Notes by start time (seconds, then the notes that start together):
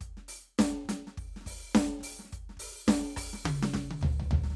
0.01 closed hi-hat, kick
0.17 snare
0.28 open hi-hat
0.58 closed hi-hat, kick, snare, hi-hat pedal
0.85 closed hi-hat, kick, snare
1.07 snare
1.18 kick, open hi-hat
1.36 snare
1.41 snare
1.45 open hi-hat, kick, snare
1.50 snare
1.72 closed hi-hat, snare, hi-hat pedal
1.76 kick
1.99 kick, snare
2.03 open hi-hat
2.19 snare
2.25 snare
2.30 kick, snare, hi-hat pedal, open hi-hat
2.49 snare
2.57 open hi-hat, kick
2.88 open hi-hat, kick, snare
3.17 open hi-hat, kick, cross-stick
3.33 snare
3.45 kick, high tom
3.63 snare
3.74 kick, snare
3.91 high tom
4.01 kick, floor tom
4.20 floor tom
4.31 kick, floor tom
4.44 snare
4.50 snare